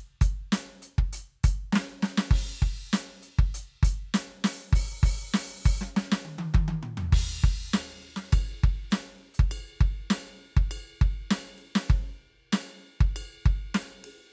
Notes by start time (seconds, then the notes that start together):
0.22 closed hi-hat, kick
0.53 closed hi-hat, snare
0.83 closed hi-hat
0.99 kick
1.14 closed hi-hat
1.45 closed hi-hat, kick
1.73 snare
1.76 snare
2.03 snare
2.18 snare
2.32 kick, crash
2.63 kick
2.94 closed hi-hat, snare
3.23 closed hi-hat
3.40 kick
3.55 closed hi-hat
3.84 closed hi-hat, kick
4.15 closed hi-hat, snare
4.45 open hi-hat, snare
4.74 open hi-hat, kick
5.04 open hi-hat, kick
5.35 open hi-hat, snare
5.66 open hi-hat, kick
5.82 snare, hi-hat pedal
5.97 snare
6.13 snare
6.26 high tom
6.39 high tom
6.55 kick, high tom
6.69 high tom
6.84 mid tom
6.98 floor tom
7.13 kick, crash
7.45 kick
7.74 snare, ride bell
8.03 ride
8.17 snare
8.33 kick, ride bell
8.64 kick
8.91 snare, hi-hat pedal, ride
9.35 closed hi-hat
9.40 kick
9.52 ride bell
9.81 kick
10.11 snare, ride bell
10.58 kick
10.72 ride bell
11.02 kick, snare
11.31 snare, ride bell
11.59 ride
11.76 snare
11.91 kick
12.53 snare, ride bell
13.01 kick
13.17 ride bell
13.46 kick
13.75 snare, ride bell
14.05 ride